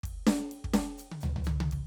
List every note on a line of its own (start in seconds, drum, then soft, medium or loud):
0.03 kick medium
0.03 ride medium
0.27 snare loud
0.27 ride medium
0.51 ride medium
0.64 kick medium
0.73 snare loud
0.73 ride medium
0.98 hi-hat pedal medium
0.98 ride medium
1.11 high tom medium
1.20 floor tom loud
1.20 hi-hat pedal medium
1.36 floor tom loud
1.44 hi-hat pedal medium
1.44 high tom loud
1.60 high tom loud
1.71 kick medium
1.71 ride soft